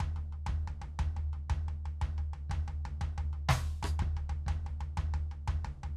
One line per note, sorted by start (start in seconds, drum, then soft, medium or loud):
0.00 kick medium
0.00 floor tom loud
0.16 floor tom medium
0.32 floor tom medium
0.46 kick medium
0.46 floor tom loud
0.68 floor tom medium
0.82 floor tom medium
0.99 kick medium
0.99 floor tom loud
1.16 floor tom medium
1.33 floor tom medium
1.50 kick medium
1.50 floor tom loud
1.68 floor tom medium
1.86 floor tom medium
2.01 kick medium
2.01 floor tom loud
2.18 floor tom medium
2.33 floor tom medium
2.50 kick medium
2.50 floor tom loud
2.68 floor tom medium
2.85 floor tom loud
3.01 kick medium
3.01 floor tom loud
3.18 floor tom loud
3.33 floor tom medium
3.49 kick medium
3.49 snare loud
3.49 floor tom loud
3.83 cross-stick medium
3.83 floor tom loud
3.99 kick medium
3.99 floor tom loud
4.17 floor tom medium
4.29 floor tom loud
4.46 kick medium
4.46 floor tom loud
4.66 floor tom medium
4.81 floor tom medium
4.97 kick medium
4.97 floor tom loud
5.14 floor tom loud
5.31 floor tom medium
5.48 kick medium
5.48 floor tom loud
5.65 floor tom loud
5.83 floor tom medium